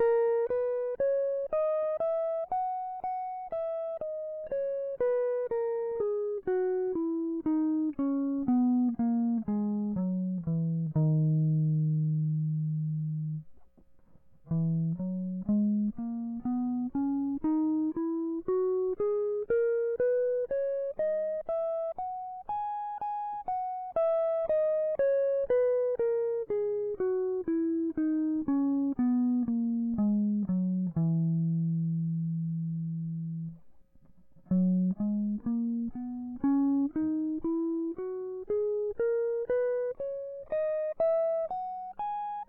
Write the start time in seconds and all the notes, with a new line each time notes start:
0.00 A#4
0.50 B4
1.00 C#5
1.53 D#5
2.00 E5
2.52 F#5
3.04 F#5
3.52 E5
4.01 D#5
4.52 C#5
5.01 B4
5.51 A#4
6.00 G#4
6.47 F#4
6.95 E4
7.46 D#4
7.99 C#4
8.49 B3
9.00 A#3
9.49 G#3
9.97 F#3
10.49 E3
10.97 D#3
14.52 E3
14.99 F#3
15.49 G#3
15.97 A#3
16.46 B3
16.95 C#4
17.44 D#4
17.97 E4
18.48 F#4
19.00 G#4
19.50 A#4
20.00 B4
20.51 C#5
20.99 D#5
21.49 E5
21.98 F#5
22.49 G#5
23.01 G#5
23.48 F#5
23.96 E5
24.49 D#5
24.99 C#5
25.50 B4
25.99 A#4
26.50 G#4
27.00 F#4
27.48 E4
27.98 D#4
28.48 C#4
28.99 B3
29.48 A#3
29.99 G#3
30.50 F#3
30.97 E3
34.52 F#3
35.01 G#3
35.47 A#3
35.94 B3
36.44 C#4
36.96 D#4
37.44 E4
37.99 F#4
38.50 G#4
39.00 A#4
39.50 B4
40.00 C#5
40.52 D#5
41.00 E5
41.51 F#5
41.99 G#5